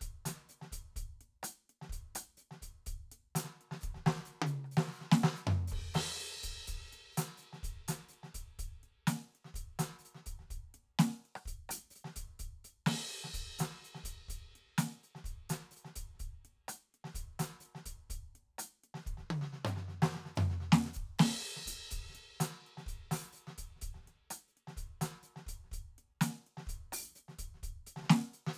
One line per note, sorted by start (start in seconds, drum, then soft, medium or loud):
0.01 closed hi-hat medium
0.01 kick soft
0.25 closed hi-hat loud
0.25 snare medium
0.49 closed hi-hat soft
0.49 hi-hat pedal medium
0.61 snare soft
0.72 closed hi-hat medium
0.72 kick soft
0.92 snare soft
0.96 closed hi-hat medium
0.96 kick soft
1.02 kick soft
1.21 closed hi-hat soft
1.43 closed hi-hat loud
1.43 cross-stick medium
1.69 closed hi-hat soft
1.81 snare soft
1.89 closed hi-hat medium
1.89 kick soft
2.15 closed hi-hat loud
2.15 cross-stick medium
2.37 hi-hat pedal soft
2.41 closed hi-hat soft
2.51 snare soft
2.62 closed hi-hat medium
2.62 kick soft
2.86 closed hi-hat medium
2.86 kick soft
2.93 kick soft
3.12 closed hi-hat medium
3.35 closed hi-hat loud
3.35 snare medium
3.44 snare soft
3.61 open hi-hat soft
3.71 snare medium
3.81 kick soft
3.81 closed hi-hat medium
3.81 hi-hat pedal soft
3.91 kick soft
3.91 snare soft
4.06 snare loud
4.18 snare soft
4.25 hi-hat pedal medium
4.30 snare soft
4.42 high tom loud
4.46 hi-hat pedal medium
4.64 cross-stick soft
4.71 hi-hat pedal soft
4.77 snare loud
4.88 snare soft
4.92 hi-hat pedal soft
5.01 snare soft
5.12 snare loud
5.12 hi-hat pedal soft
5.24 snare loud
5.35 snare soft
5.35 hi-hat pedal soft
5.47 floor tom loud
5.67 hi-hat pedal medium
5.72 kick soft
5.72 crash medium
5.94 snare loud
5.94 crash loud
6.20 closed hi-hat soft
6.36 snare soft
6.43 closed hi-hat medium
6.43 kick soft
6.54 snare soft
6.67 closed hi-hat medium
6.67 kick soft
6.74 kick soft
6.93 closed hi-hat medium
7.12 hi-hat pedal soft
7.17 closed hi-hat loud
7.17 snare medium
7.37 hi-hat pedal soft
7.43 closed hi-hat soft
7.53 snare soft
7.63 closed hi-hat medium
7.63 kick soft
7.88 closed hi-hat loud
7.88 snare medium
8.09 hi-hat pedal soft
8.13 closed hi-hat soft
8.23 snare soft
8.34 closed hi-hat medium
8.34 kick soft
8.59 closed hi-hat medium
8.59 kick soft
8.83 closed hi-hat soft
9.07 closed hi-hat loud
9.07 snare loud
9.35 closed hi-hat soft
9.45 snare soft
9.54 closed hi-hat medium
9.54 kick soft
9.79 closed hi-hat loud
9.79 snare medium
9.99 hi-hat pedal soft
10.05 closed hi-hat soft
10.15 snare soft
10.26 closed hi-hat medium
10.26 kick soft
10.39 snare soft
10.44 snare soft
10.47 closed hi-hat medium
10.47 kick soft
10.47 snare soft
10.56 kick soft
10.74 closed hi-hat soft
10.99 closed hi-hat medium
10.99 snare loud
11.16 hi-hat pedal soft
11.25 closed hi-hat soft
11.35 cross-stick medium
11.45 closed hi-hat medium
11.45 kick soft
11.69 closed hi-hat loud
11.69 cross-stick medium
11.90 hi-hat pedal medium
11.96 closed hi-hat soft
12.04 snare medium
12.16 closed hi-hat medium
12.16 kick soft
12.39 closed hi-hat medium
12.39 kick soft
12.64 closed hi-hat medium
12.86 snare loud
12.86 crash loud
13.09 closed hi-hat soft
13.09 hi-hat pedal soft
13.24 snare soft
13.33 closed hi-hat medium
13.33 kick soft
13.33 snare soft
13.59 closed hi-hat loud
13.59 snare medium
13.84 closed hi-hat soft
13.95 snare soft
14.04 closed hi-hat medium
14.04 kick soft
14.20 snare soft
14.28 closed hi-hat medium
14.28 kick soft
14.55 closed hi-hat soft
14.78 closed hi-hat loud
14.78 snare medium
15.03 closed hi-hat soft
15.15 snare soft
15.24 closed hi-hat medium
15.24 kick soft
15.50 closed hi-hat loud
15.50 snare medium
15.71 hi-hat pedal soft
15.76 closed hi-hat soft
15.85 snare soft
15.96 closed hi-hat medium
15.96 kick soft
16.14 snare soft
16.20 closed hi-hat medium
16.20 kick soft
16.45 closed hi-hat soft
16.68 closed hi-hat loud
16.68 cross-stick medium
16.94 closed hi-hat soft
17.04 snare medium
17.14 closed hi-hat medium
17.14 kick soft
17.39 open hi-hat loud
17.39 snare medium
17.60 hi-hat pedal medium
17.65 closed hi-hat soft
17.75 snare soft
17.86 closed hi-hat medium
17.86 kick soft
18.10 closed hi-hat medium
18.10 kick soft
18.35 closed hi-hat soft
18.58 closed hi-hat loud
18.58 cross-stick medium
18.84 closed hi-hat soft
18.94 snare medium
19.06 kick soft
19.06 closed hi-hat medium
19.14 kick soft
19.14 snare soft
19.28 kick soft
19.28 high tom loud
19.41 snare soft
19.53 snare soft
19.65 hi-hat pedal medium
19.65 mid tom loud
19.76 snare soft
19.88 snare soft
20.02 snare loud
20.02 hi-hat pedal medium
20.15 snare soft
20.25 snare soft
20.35 floor tom loud
20.35 hi-hat pedal soft
20.50 snare soft
20.60 snare soft
20.72 snare loud
20.85 snare soft
20.93 kick soft
20.93 hi-hat pedal medium
21.02 kick soft
21.19 snare loud
21.19 crash loud
21.45 closed hi-hat soft
21.56 snare soft
21.66 closed hi-hat loud
21.66 kick soft
21.91 closed hi-hat medium
21.91 kick soft
22.09 snare soft
22.15 closed hi-hat medium
22.40 closed hi-hat loud
22.40 snare loud
22.66 closed hi-hat soft
22.77 snare soft
22.86 closed hi-hat medium
22.86 kick soft
22.93 kick soft
23.11 open hi-hat loud
23.11 snare medium
23.23 snare soft
23.32 closed hi-hat soft
23.32 hi-hat pedal medium
23.47 snare soft
23.58 closed hi-hat medium
23.58 kick soft
23.76 snare soft
23.81 closed hi-hat medium
23.81 kick soft
23.94 snare soft
24.00 snare soft
24.05 snare soft
24.05 closed hi-hat soft
24.30 closed hi-hat loud
24.30 cross-stick medium
24.48 hi-hat pedal soft
24.57 closed hi-hat soft
24.67 snare soft
24.77 closed hi-hat medium
24.77 kick soft
25.01 closed hi-hat loud
25.01 snare medium
25.23 closed hi-hat soft
25.23 hi-hat pedal soft
25.36 snare soft
25.46 closed hi-hat medium
25.46 kick soft
25.46 snare soft
25.64 snare soft
25.71 closed hi-hat medium
25.71 kick soft
25.71 snare soft
25.77 kick soft
25.98 closed hi-hat soft
26.21 closed hi-hat loud
26.21 snare loud
26.47 closed hi-hat soft
26.57 snare soft
26.67 closed hi-hat medium
26.67 kick soft
26.74 kick soft
26.92 open hi-hat loud
26.92 cross-stick medium
27.15 closed hi-hat soft
27.15 hi-hat pedal medium
27.28 snare soft
27.39 closed hi-hat medium
27.39 kick soft
27.54 snare soft
27.61 closed hi-hat medium
27.61 kick soft
27.61 snare soft
27.64 snare soft
27.87 closed hi-hat medium
27.96 snare medium
28.03 snare soft
28.10 snare loud
28.24 snare soft
28.33 open hi-hat soft
28.47 snare medium
28.53 hi-hat pedal medium